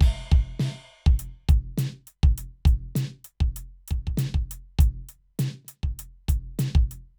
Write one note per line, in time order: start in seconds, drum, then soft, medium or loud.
0.01 kick loud
0.01 ride loud
0.32 kick loud
0.32 snare soft
0.60 snare loud
0.60 ride medium
1.06 kick loud
1.19 closed hi-hat loud
1.49 closed hi-hat medium
1.49 kick loud
1.78 closed hi-hat loud
1.78 snare loud
2.07 closed hi-hat medium
2.23 kick loud
2.38 closed hi-hat loud
2.66 closed hi-hat medium
2.66 kick loud
2.96 closed hi-hat loud
2.96 snare loud
3.25 closed hi-hat medium
3.41 kick loud
3.56 closed hi-hat loud
3.88 closed hi-hat loud
3.88 kick medium
4.07 kick medium
4.18 closed hi-hat loud
4.18 snare loud
4.34 kick medium
4.51 closed hi-hat loud
4.79 closed hi-hat loud
4.79 kick loud
5.09 closed hi-hat medium
5.39 closed hi-hat loud
5.39 snare loud
5.65 closed hi-hat loud
5.65 snare soft
5.83 kick medium
5.99 closed hi-hat loud
6.29 closed hi-hat loud
6.29 kick loud
6.59 closed hi-hat loud
6.59 snare loud
6.75 kick loud
6.91 closed hi-hat medium